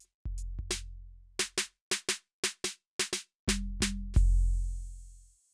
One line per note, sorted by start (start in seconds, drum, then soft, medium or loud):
0.01 closed hi-hat medium
0.05 snare soft
0.26 kick soft
0.39 closed hi-hat medium
0.59 kick soft
0.71 closed hi-hat loud
0.71 snare loud
1.40 snare loud
1.58 snare loud
1.92 snare loud
2.09 snare loud
2.44 snare loud
2.65 snare loud
3.00 snare loud
3.13 snare loud
3.48 kick medium
3.48 snare loud
3.48 mid tom loud
3.81 kick medium
3.81 snare loud
3.81 mid tom loud
4.15 kick loud
4.15 snare soft
4.15 crash medium